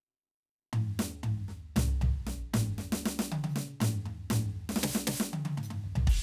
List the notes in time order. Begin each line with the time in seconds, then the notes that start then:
0.73 mid tom
0.99 snare
1.23 mid tom
1.48 snare
1.76 snare, floor tom
2.01 floor tom
2.27 snare
2.53 snare, mid tom
2.78 snare
2.92 snare
3.06 snare
3.19 snare
3.32 high tom
3.44 high tom
3.49 hi-hat pedal
3.56 snare
3.80 snare, mid tom
4.06 mid tom
4.30 snare, mid tom
4.69 snare
4.76 snare
4.83 snare
4.95 snare
5.07 snare
5.20 snare
5.33 high tom
5.45 high tom
5.57 mid tom
5.63 hi-hat pedal
5.70 mid tom
5.84 floor tom
5.95 floor tom
6.07 kick, crash